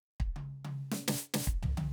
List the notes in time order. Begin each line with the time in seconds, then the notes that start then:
0.20 kick
0.36 high tom
0.65 high tom
0.92 snare
1.08 snare
1.34 snare
1.47 kick
1.63 floor tom
1.77 high tom